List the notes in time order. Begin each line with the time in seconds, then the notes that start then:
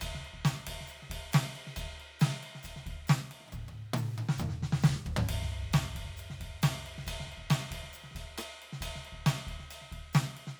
0.01 kick, ride bell, percussion
0.09 kick
0.15 snare
0.21 snare
0.25 ride
0.34 kick
0.45 snare, ride bell, percussion
0.56 snare
0.67 kick, ride
0.73 kick
0.81 snare
0.88 ride, percussion
1.02 snare
1.10 kick, ride
1.16 kick
1.32 snare, ride, percussion
1.56 ride
1.67 snare
1.76 kick, ride bell, percussion
1.84 kick, snare
1.89 snare
1.92 snare
2.00 ride
2.20 snare, ride bell, percussion
2.43 ride
2.55 snare
2.63 kick, ride bell, percussion
2.76 snare
2.83 kick, snare, ride
2.93 kick
3.07 snare, ride bell, percussion
3.31 ride
3.41 cross-stick
3.46 high tom, percussion
3.48 high tom
3.52 kick, high tom, percussion
3.68 high tom
3.94 high tom, percussion
4.18 high tom
4.29 snare
4.38 kick, mid tom, percussion
4.49 snare
4.61 kick, snare
4.73 snare
4.83 kick, snare, percussion
4.89 kick
4.96 cross-stick
5.06 kick, floor tom
5.14 kick, floor tom
5.29 kick, ride, percussion
5.40 kick, snare
5.54 ride
5.62 kick
5.67 kick
5.73 snare, ride, percussion
5.95 kick, ride
6.01 kick, snare
6.17 ride, percussion
6.30 snare
6.41 kick, ride
6.47 kick
6.62 snare, ride, percussion
6.73 snare
6.86 ride
6.98 snare
7.07 kick, ride bell, percussion
7.13 kick
7.20 snare
7.27 snare
7.32 ride
7.37 kick
7.42 kick
7.50 snare, ride bell, percussion
7.61 snare
7.71 kick, ride
7.77 kick
7.83 snare
7.93 ride, percussion
8.04 snare
8.11 kick, snare
8.16 ride bell
8.21 kick
8.38 cross-stick, ride bell, percussion
8.62 ride
8.73 snare
8.81 kick, ride bell, percussion
8.87 kick
8.96 snare
9.05 ride
9.12 kick
9.18 kick
9.26 snare, ride bell, percussion
9.47 kick, ride
9.53 kick
9.60 snare
9.71 ride bell, percussion
9.82 snare
9.92 kick, ride
9.98 kick
10.13 snare, ride bell, percussion
10.22 snare
10.37 ride
10.47 snare